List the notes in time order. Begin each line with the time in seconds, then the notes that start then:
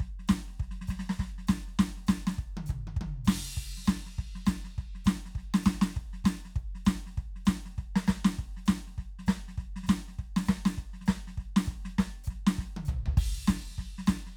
0.01 kick, snare
0.20 snare
0.29 kick, snare, hi-hat pedal
0.49 snare
0.61 kick, snare
0.72 snare
0.82 snare
0.88 kick, snare, hi-hat pedal
1.00 snare
1.10 snare
1.20 kick, snare
1.39 snare
1.48 kick, snare, hi-hat pedal
1.69 snare
1.80 kick, snare
1.98 snare
2.08 kick, snare, hi-hat pedal
2.28 snare
2.39 kick
2.58 high tom
2.67 kick, hi-hat pedal
2.72 high tom
2.88 high tom
2.98 kick
3.02 high tom
3.26 kick, snare, hi-hat pedal, crash
3.58 kick
3.78 snare
3.86 kick, snare, hi-hat pedal
4.07 snare
4.19 kick, snare
4.36 snare
4.47 kick, snare, hi-hat pedal
4.66 snare
4.79 kick, snare
4.96 snare
5.06 kick, snare, hi-hat pedal
5.27 snare
5.36 kick, snare
5.55 snare
5.64 kick, snare, hi-hat pedal
5.83 snare
5.96 kick, snare
6.14 snare
6.25 kick, snare, hi-hat pedal
6.46 snare
6.57 kick, cross-stick
6.76 snare
6.86 kick, snare, hi-hat pedal
7.08 snare
7.19 kick, snare
7.37 snare
7.47 kick, snare, hi-hat pedal
7.66 snare
7.79 kick, snare
7.97 snare
8.08 kick, snare, hi-hat pedal
8.26 snare
8.39 kick, snare
8.58 snare
8.67 kick, snare, hi-hat pedal
8.89 snare
8.99 kick, snare
9.20 snare
9.28 kick, snare, hi-hat pedal
9.49 snare
9.59 kick, snare
9.77 snare
9.84 snare, hi-hat pedal
9.90 kick, snare
10.09 snare
10.20 kick, snare
10.37 snare
10.46 kick, snare, hi-hat pedal
10.66 snare
10.78 kick, snare
10.95 snare
11.02 snare
11.07 kick, snare, hi-hat pedal
11.29 snare
11.39 kick, snare
11.57 snare
11.65 kick, hi-hat pedal
11.70 snare
11.86 snare
12.00 kick, snare
12.25 kick, hi-hat pedal
12.31 snare
12.48 snare
12.59 kick, snare
12.78 high tom
12.86 kick, hi-hat pedal
12.90 floor tom
13.07 floor tom
13.18 kick, crash
13.48 kick, snare, hi-hat pedal
13.71 snare
13.79 kick, snare
13.99 snare
14.08 kick, snare, hi-hat pedal
14.27 snare